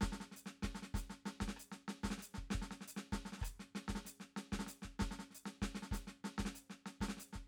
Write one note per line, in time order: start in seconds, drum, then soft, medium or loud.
0.01 kick soft
0.01 snare medium
0.12 snare soft
0.20 snare soft
0.32 snare soft
0.36 hi-hat pedal soft
0.46 snare soft
0.63 kick soft
0.63 snare medium
0.75 snare soft
0.83 snare soft
0.94 kick soft
0.94 snare soft
0.94 hi-hat pedal medium
1.10 snare soft
1.26 snare soft
1.40 kick soft
1.40 snare soft
1.48 snare soft
1.57 cross-stick soft
1.57 hi-hat pedal medium
1.72 snare soft
1.88 snare soft
2.04 kick soft
2.04 snare medium
2.11 snare soft
2.18 snare soft
2.22 hi-hat pedal medium
2.34 kick soft
2.34 snare soft
2.51 snare medium
2.55 kick soft
2.62 snare soft
2.71 snare soft
2.88 hi-hat pedal medium
2.97 snare soft
3.12 kick soft
3.12 snare medium
3.25 snare soft
3.32 snare soft
3.38 kick soft
3.38 snare soft
3.43 cross-stick soft
3.43 hi-hat pedal medium
3.60 snare soft
3.75 snare soft
3.88 kick soft
3.88 snare soft
3.95 snare soft
4.05 snare soft
4.05 hi-hat pedal medium
4.20 snare soft
4.37 snare soft
4.52 kick soft
4.52 snare medium
4.59 snare soft
4.67 snare soft
4.67 hi-hat pedal medium
4.82 kick soft
4.82 snare soft
4.99 kick soft
4.99 snare medium
5.11 snare soft
5.19 snare soft
5.31 snare soft
5.35 hi-hat pedal medium
5.46 snare soft
5.62 kick soft
5.62 snare medium
5.75 snare soft
5.82 snare soft
5.91 kick soft
5.91 hi-hat pedal medium
6.07 snare soft
6.24 snare soft
6.38 kick soft
6.38 snare medium
6.45 snare soft
6.55 cross-stick soft
6.55 hi-hat pedal medium
6.70 snare soft
6.86 snare soft
7.01 kick soft
7.01 snare medium
7.09 snare soft
7.17 snare soft
7.17 hi-hat pedal medium
7.33 kick soft
7.33 snare soft